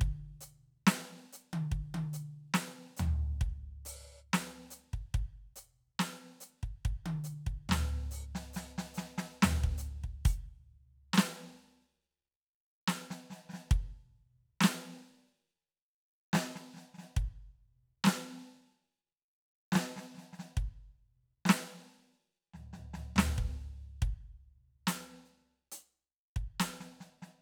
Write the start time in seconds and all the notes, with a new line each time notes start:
0.01 kick
0.41 hi-hat pedal
0.87 snare
1.33 hi-hat pedal
1.53 high tom
1.72 kick
1.94 high tom
2.13 hi-hat pedal
2.54 snare
2.97 floor tom, hi-hat pedal
3.41 kick
3.50 kick
3.85 hi-hat pedal
4.33 snare
4.71 hi-hat pedal
4.93 kick
5.14 kick
5.56 hi-hat pedal
5.99 snare
6.40 hi-hat pedal
6.63 kick
6.85 kick
7.06 high tom
7.24 hi-hat pedal
7.47 kick
7.69 snare, floor tom
8.11 hi-hat pedal
8.35 snare
8.53 snare, hi-hat pedal
8.78 snare
8.94 snare, hi-hat pedal
9.18 snare
9.42 snare, floor tom
9.63 kick
9.78 hi-hat pedal
10.04 kick
10.25 open hi-hat, kick
10.45 kick
11.13 snare
11.18 snare
12.88 snare
13.10 snare
13.30 snare
13.49 snare
13.53 snare
13.71 kick
14.61 snare
14.64 snare
16.33 snare
16.35 snare
16.55 snare
16.74 snare
16.76 snare
16.94 snare
16.98 snare
17.17 kick
18.04 snare
18.07 snare
19.72 snare
19.75 snare
19.96 snare
19.98 snare
20.14 snare
20.17 snare
20.33 snare
20.39 snare
20.57 kick
21.45 snare
21.49 snare
22.54 snare, floor tom
22.73 snare, floor tom
22.94 snare, floor tom
23.16 snare, floor tom
23.38 kick
24.02 kick
24.87 closed hi-hat, snare
25.25 hi-hat pedal
25.72 closed hi-hat
26.36 kick
26.60 closed hi-hat, snare
26.80 snare
27.00 snare
27.22 snare